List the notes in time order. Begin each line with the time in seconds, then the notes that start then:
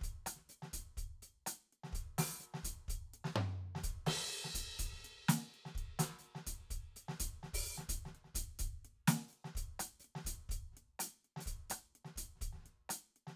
0.01 closed hi-hat, kick, snare
0.27 closed hi-hat, cross-stick
0.36 snare
0.50 closed hi-hat, hi-hat pedal
0.63 snare
0.74 closed hi-hat, kick
0.98 closed hi-hat, kick
1.23 closed hi-hat
1.47 closed hi-hat, cross-stick
1.73 closed hi-hat
1.84 snare
1.91 kick, snare
1.95 closed hi-hat
2.19 open hi-hat, snare
2.40 closed hi-hat, hi-hat pedal
2.54 snare
2.64 closed hi-hat, kick
2.89 closed hi-hat, kick
2.95 kick
3.14 closed hi-hat
3.25 snare
3.36 mid tom
3.44 snare
3.48 snare
3.76 snare
3.84 closed hi-hat, kick
4.07 snare, crash
4.27 hi-hat pedal
4.34 closed hi-hat
4.45 snare
4.55 closed hi-hat, kick
4.80 closed hi-hat, kick
4.93 snare
4.97 snare
5.05 closed hi-hat
5.29 closed hi-hat, snare
5.55 closed hi-hat
5.66 snare
5.75 kick, closed hi-hat
6.00 closed hi-hat, snare
6.19 hi-hat pedal
6.25 closed hi-hat
6.36 snare
6.47 closed hi-hat, kick
6.60 snare
6.71 closed hi-hat, kick
6.76 kick
6.97 closed hi-hat
7.09 snare
7.20 closed hi-hat, kick
7.26 kick
7.43 snare
7.54 open hi-hat, kick
7.60 kick
7.76 snare, hi-hat pedal
7.89 closed hi-hat, kick
8.06 snare
8.15 closed hi-hat
8.25 snare
8.35 closed hi-hat, kick
8.59 closed hi-hat, kick
8.67 kick
8.85 closed hi-hat
9.08 closed hi-hat, snare
9.29 hi-hat pedal
9.33 closed hi-hat
9.45 snare
9.56 closed hi-hat, kick
9.80 closed hi-hat, cross-stick
10.00 hi-hat pedal
10.05 closed hi-hat
10.16 snare
10.25 closed hi-hat, kick
10.50 closed hi-hat, kick
10.73 snare
10.77 closed hi-hat
11.00 closed hi-hat, cross-stick
11.25 open hi-hat
11.37 snare
11.41 hi-hat pedal
11.46 closed hi-hat, kick
11.70 closed hi-hat, cross-stick
11.96 closed hi-hat
12.05 snare
12.16 closed hi-hat, kick
12.36 snare
12.42 closed hi-hat, kick
12.53 snare
12.57 snare
12.61 snare
12.65 snare, closed hi-hat
12.90 closed hi-hat, cross-stick
13.17 closed hi-hat
13.27 snare